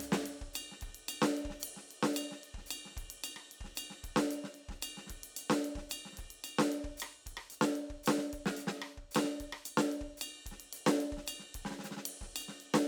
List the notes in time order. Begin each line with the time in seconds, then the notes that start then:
0.01 hi-hat pedal, ride
0.12 snare
0.26 ride
0.42 kick
0.54 hi-hat pedal, ride bell
0.72 snare
0.81 kick, snare, ride
0.89 snare
0.95 ride
1.09 hi-hat pedal, ride bell
1.22 snare
1.37 ride
1.45 kick
1.50 snare
1.60 hi-hat pedal, ride
1.77 snare
1.91 ride
2.03 snare
2.14 hi-hat pedal, ride bell
2.32 snare
2.44 ride
2.55 kick, snare
2.67 hi-hat pedal
2.71 ride bell
2.86 snare
2.91 snare
2.97 kick, snare, ride
3.02 snare
3.11 ride
3.24 hi-hat pedal, ride bell
3.37 cross-stick
3.52 ride
3.61 kick, snare
3.76 hi-hat pedal, ride bell
3.91 snare
4.04 kick, ride
4.17 snare
4.31 hi-hat pedal, ride
4.44 snare
4.55 ride
4.69 kick, snare
4.82 hi-hat pedal, ride bell
4.98 snare
5.07 kick, snare, ride
5.24 ride
5.37 hi-hat pedal, ride bell
5.50 snare
5.65 ride
5.76 kick, snare
5.90 hi-hat pedal, ride bell
6.06 snare
6.13 snare
6.17 kick, snare, ride
6.31 ride
6.45 hi-hat pedal, ride bell
6.59 snare
6.72 ride
6.85 kick
6.98 hi-hat pedal, ride bell
7.03 cross-stick
7.27 kick, ride
7.37 cross-stick
7.51 hi-hat pedal, ride bell
7.62 snare
7.76 ride
7.90 kick
8.04 hi-hat pedal, ride bell
8.08 snare
8.18 snare
8.33 kick, ride
8.46 snare
8.57 hi-hat pedal, ride bell
8.68 snare
8.82 cross-stick
8.98 kick
9.12 hi-hat pedal, ride bell
9.16 snare
9.24 snare
9.41 kick, ride
9.53 cross-stick
9.66 hi-hat pedal, ride bell
9.78 snare
9.92 ride
10.02 kick
10.18 hi-hat pedal
10.22 ride bell
10.46 kick, ride
10.52 snare
10.60 ride
10.73 hi-hat pedal, ride
10.87 snare
11.01 ride
11.12 kick
11.18 snare
11.27 hi-hat pedal, ride bell
11.40 snare
11.55 kick, ride
11.66 snare
11.71 snare
11.79 snare
11.84 snare, hi-hat pedal
11.90 snare
11.97 snare
12.06 ride
12.22 kick, snare
12.36 hi-hat pedal, ride bell
12.49 snare
12.61 ride
12.74 snare